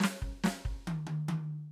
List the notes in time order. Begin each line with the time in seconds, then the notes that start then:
0.00 snare
0.03 snare
0.22 kick
0.44 snare
0.46 snare
0.65 kick
0.87 high tom
1.07 high tom
1.28 high tom